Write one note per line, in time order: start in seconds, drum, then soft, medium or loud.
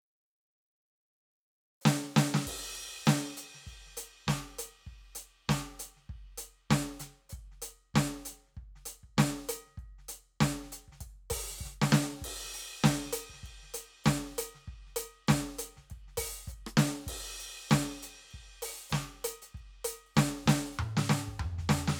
1.81 snare loud
1.81 hi-hat pedal soft
2.03 snare soft
2.16 snare loud
2.34 snare loud
2.46 kick soft
2.46 crash medium
2.75 snare soft
2.75 floor tom soft
2.75 ride medium
3.06 snare loud
3.06 hi-hat pedal medium
3.37 closed hi-hat medium
3.54 snare soft
3.67 closed hi-hat soft
3.67 kick soft
3.86 snare soft
3.97 closed hi-hat loud
4.27 kick medium
4.27 snare loud
4.59 closed hi-hat loud
4.86 kick soft
5.15 closed hi-hat medium
5.49 kick medium
5.49 snare loud
5.73 snare soft
5.79 closed hi-hat loud
5.96 snare soft
6.06 kick medium
6.06 closed hi-hat soft
6.38 closed hi-hat loud
6.70 kick medium
6.70 snare loud
7.00 closed hi-hat medium
7.00 snare soft
7.29 kick medium
7.29 hi-hat pedal medium
7.51 snare soft
7.62 closed hi-hat loud
7.94 kick medium
7.94 snare loud
8.19 snare soft
8.25 closed hi-hat medium
8.47 snare soft
8.54 kick soft
8.54 closed hi-hat soft
8.75 snare soft
8.85 closed hi-hat loud
9.03 kick soft
9.17 kick soft
9.17 snare loud
9.44 snare soft
9.49 closed hi-hat loud
9.67 snare soft
9.77 kick medium
9.77 closed hi-hat soft
9.98 snare soft
10.08 closed hi-hat loud
10.40 kick medium
10.40 snare loud
10.63 snare soft
10.72 closed hi-hat medium
10.88 kick soft
10.92 snare soft
11.01 kick soft
11.01 closed hi-hat medium
11.30 open hi-hat loud
11.30 kick medium
11.50 snare soft
11.61 kick medium
11.65 snare soft
11.82 snare loud
11.92 snare loud
12.12 snare soft
12.22 kick medium
12.22 crash medium
12.44 snare soft
12.54 open hi-hat medium
12.84 kick medium
12.84 snare loud
12.84 hi-hat pedal soft
13.06 snare soft
13.13 closed hi-hat loud
13.29 kick soft
13.29 snare soft
13.43 kick soft
13.43 closed hi-hat soft
13.63 snare soft
13.74 closed hi-hat loud
14.04 kick medium
14.04 snare loud
14.04 hi-hat pedal soft
14.31 snare soft
14.38 closed hi-hat loud
14.55 snare soft
14.67 kick medium
14.67 closed hi-hat soft
14.86 snare soft
14.96 closed hi-hat loud
15.28 kick medium
15.28 snare loud
15.28 hi-hat pedal soft
15.59 closed hi-hat loud
15.77 kick soft
15.77 snare soft
15.90 kick soft
15.90 closed hi-hat soft
16.08 snare soft
16.17 open hi-hat loud
16.17 kick medium
16.47 kick medium
16.47 hi-hat pedal medium
16.66 cross-stick medium
16.77 snare loud
17.07 kick medium
17.07 crash medium
17.40 closed hi-hat medium
17.70 kick soft
17.70 snare loud
17.70 hi-hat pedal medium
18.03 closed hi-hat medium
18.31 kick soft
18.31 closed hi-hat soft
18.57 closed hi-hat soft
18.62 open hi-hat loud
18.89 kick soft
18.89 snare medium
18.89 hi-hat pedal medium
19.24 closed hi-hat loud
19.42 closed hi-hat medium
19.54 kick soft
19.54 closed hi-hat soft
19.84 open hi-hat loud
19.84 kick soft
20.06 open hi-hat soft
20.15 kick soft
20.15 snare loud
20.15 hi-hat pedal soft
20.46 kick soft
20.46 snare loud
20.65 open hi-hat soft
20.73 hi-hat pedal soft
20.79 kick soft
20.79 high tom loud
20.97 snare loud
21.09 snare loud
21.28 kick soft
21.39 mid tom loud
21.58 kick soft
21.58 snare soft
21.69 snare loud
21.88 snare loud